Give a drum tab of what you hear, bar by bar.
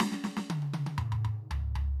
Snare     |oooo------------|
High tom  |----oooo--------|
Mid tom   |--------ooo-----|
Floor tom |------------o-o-|